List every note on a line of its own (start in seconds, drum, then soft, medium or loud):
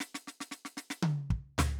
0.00 snare medium
0.14 snare medium
0.27 snare medium
0.40 snare medium
0.51 snare medium
0.65 snare medium
0.77 snare medium
0.90 snare medium
1.03 high tom loud
1.30 kick medium
1.58 snare loud
1.58 floor tom loud